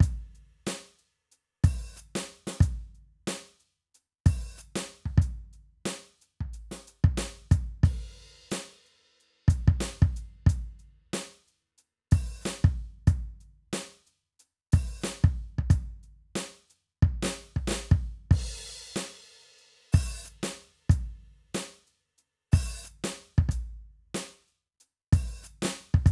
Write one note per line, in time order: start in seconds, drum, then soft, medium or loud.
0.01 kick loud
0.01 closed hi-hat loud
0.35 closed hi-hat soft
0.67 snare loud
0.67 closed hi-hat loud
0.99 closed hi-hat soft
1.32 closed hi-hat medium
1.64 kick loud
1.64 open hi-hat loud
1.97 hi-hat pedal loud
2.16 snare loud
2.16 closed hi-hat loud
2.48 snare loud
2.61 kick loud
2.61 closed hi-hat loud
2.95 closed hi-hat soft
3.28 snare loud
3.28 closed hi-hat loud
3.60 closed hi-hat soft
3.95 closed hi-hat medium
4.26 kick loud
4.26 open hi-hat loud
4.58 hi-hat pedal loud
4.76 snare loud
4.76 closed hi-hat loud
5.06 kick medium
5.18 kick loud
5.18 closed hi-hat loud
5.53 closed hi-hat soft
5.86 snare loud
5.86 closed hi-hat loud
6.22 closed hi-hat medium
6.41 kick medium
6.54 closed hi-hat medium
6.72 snare medium
6.88 closed hi-hat medium
7.05 kick loud
7.18 snare loud
7.18 closed hi-hat loud
7.52 kick loud
7.52 closed hi-hat loud
7.84 kick loud
7.84 crash loud
8.52 snare loud
8.52 closed hi-hat loud
8.86 closed hi-hat soft
9.21 closed hi-hat soft
9.49 kick loud
9.49 closed hi-hat loud
9.68 kick loud
9.81 snare loud
9.81 closed hi-hat loud
10.03 kick loud
10.17 closed hi-hat medium
10.47 kick loud
10.47 closed hi-hat loud
10.80 closed hi-hat soft
11.14 snare loud
11.14 closed hi-hat loud
11.48 closed hi-hat soft
11.78 closed hi-hat medium
12.12 kick loud
12.12 open hi-hat loud
12.42 snare loud
12.42 hi-hat pedal medium
12.46 closed hi-hat medium
12.65 kick loud
13.08 kick loud
13.08 closed hi-hat loud
13.41 closed hi-hat soft
13.74 snare loud
13.74 closed hi-hat loud
14.07 closed hi-hat soft
14.40 closed hi-hat medium
14.73 kick loud
14.73 open hi-hat loud
15.02 snare loud
15.02 hi-hat pedal medium
15.06 closed hi-hat loud
15.24 kick loud
15.59 kick medium
15.71 kick loud
15.71 closed hi-hat loud
16.04 closed hi-hat soft
16.36 snare loud
16.36 closed hi-hat loud
16.70 closed hi-hat medium
17.03 kick loud
17.23 snare loud
17.25 snare loud
17.57 kick medium
17.68 snare loud
17.72 snare loud
17.92 kick loud
18.32 kick loud
18.32 crash loud
18.96 snare loud
18.96 closed hi-hat loud
19.29 closed hi-hat soft
19.59 closed hi-hat soft
19.93 open hi-hat loud
19.93 kick loud
20.25 hi-hat pedal loud
20.44 snare loud
20.44 closed hi-hat loud
20.90 kick loud
20.90 closed hi-hat loud
21.55 snare loud
21.55 closed hi-hat loud
21.88 closed hi-hat soft
22.18 closed hi-hat soft
22.52 open hi-hat loud
22.52 kick loud
22.85 hi-hat pedal loud
23.04 snare loud
23.04 closed hi-hat loud
23.39 kick loud
23.49 kick medium
23.49 closed hi-hat loud
24.15 closed hi-hat loud
24.15 snare loud
24.48 closed hi-hat soft
24.81 closed hi-hat medium
25.13 kick loud
25.13 open hi-hat loud
25.44 hi-hat pedal loud
25.63 snare loud
25.65 snare loud
25.95 kick loud
26.07 kick loud
26.07 closed hi-hat loud